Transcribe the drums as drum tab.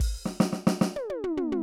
Hi-hat    |o-----------|
Snare     |--ooooo-----|
High tom  |-------oo---|
Floor tom |---------ooo|
Kick      |o-----------|